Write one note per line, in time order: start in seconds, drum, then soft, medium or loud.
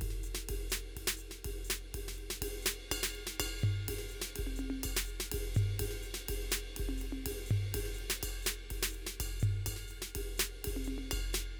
0.01 kick soft
0.01 ride medium
0.09 kick soft
0.09 snare soft
0.23 hi-hat pedal medium
0.23 ride soft
0.34 snare medium
0.49 kick soft
0.49 ride loud
0.56 kick soft
0.70 snare medium
0.70 hi-hat pedal medium
0.97 kick soft
0.97 ride medium
1.07 snare loud
1.17 hi-hat pedal medium
1.17 ride soft
1.31 snare medium
1.44 kick soft
1.44 ride medium
1.51 kick soft
1.64 hi-hat pedal medium
1.70 snare medium
1.94 kick soft
1.94 ride medium
2.00 kick soft
2.08 snare medium
2.13 hi-hat pedal medium
2.18 ride soft
2.30 snare medium
2.42 kick soft
2.42 ride loud
2.62 snare loud
2.62 hi-hat pedal medium
2.91 kick soft
2.91 ride bell loud
3.03 snare medium
3.11 hi-hat pedal medium
3.15 ride soft
3.27 snare medium
3.40 kick soft
3.40 ride bell loud
3.46 kick soft
3.59 hi-hat pedal medium
3.63 floor tom loud
3.88 kick soft
3.88 ride loud
3.95 kick soft
3.95 snare soft
4.09 hi-hat pedal medium
4.09 ride soft
4.21 snare medium
4.36 kick soft
4.36 ride loud
4.45 kick soft
4.45 high tom medium
4.56 hi-hat pedal medium
4.56 high tom medium
4.70 high tom loud
4.83 kick soft
4.83 ride bell loud
4.91 kick soft
4.96 snare loud
5.05 hi-hat pedal medium
5.05 ride soft
5.20 snare medium
5.32 kick soft
5.32 ride loud
5.41 kick soft
5.54 hi-hat pedal medium
5.54 floor tom loud
5.79 kick soft
5.79 ride loud
5.91 snare soft
6.03 hi-hat pedal medium
6.03 ride soft
6.14 snare medium
6.28 kick soft
6.28 ride loud
6.36 kick soft
6.51 snare loud
6.51 hi-hat pedal medium
6.76 kick soft
6.76 ride loud
6.86 kick soft
6.86 high tom medium
6.98 hi-hat pedal medium
6.98 ride medium
7.12 high tom medium
7.26 kick soft
7.26 ride loud
7.33 kick soft
7.46 hi-hat pedal medium
7.51 floor tom loud
7.74 kick soft
7.74 ride loud
7.81 kick soft
7.85 snare soft
7.94 hi-hat pedal medium
7.98 ride soft
8.10 snare medium
8.23 kick soft
8.23 ride bell loud
8.42 snare loud
8.42 hi-hat pedal medium
8.70 kick soft
8.70 ride medium
8.82 snare loud
8.90 hi-hat pedal medium
8.94 ride soft
9.06 snare medium
9.20 kick soft
9.20 ride bell loud
9.27 kick soft
9.40 hi-hat pedal medium
9.40 floor tom loud
9.66 kick soft
9.66 ride bell loud
9.76 snare soft
9.88 hi-hat pedal medium
9.88 ride soft
10.02 snare medium
10.15 kick soft
10.15 ride loud
10.22 kick soft
10.38 snare loud
10.38 hi-hat pedal medium
10.64 kick soft
10.64 ride loud
10.74 kick soft
10.74 high tom medium
10.84 hi-hat pedal medium
10.84 high tom medium
10.98 high tom medium
11.11 kick soft
11.11 ride bell loud
11.20 kick soft
11.33 snare loud
11.33 hi-hat pedal medium